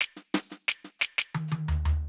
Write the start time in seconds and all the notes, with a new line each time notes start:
0.01 snare
0.17 snare
0.34 snare
0.50 snare, hi-hat pedal
0.68 snare
0.84 snare
0.99 snare, hi-hat pedal
1.18 snare
1.35 high tom
1.48 hi-hat pedal, high tom
1.68 floor tom
1.85 floor tom